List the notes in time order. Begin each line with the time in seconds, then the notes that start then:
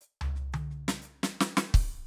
0.02 hi-hat pedal
0.21 floor tom
0.35 snare
0.52 hi-hat pedal, high tom
0.70 snare
0.88 snare
1.02 cross-stick, hi-hat pedal
1.23 snare
1.41 snare
1.57 snare
1.74 open hi-hat, kick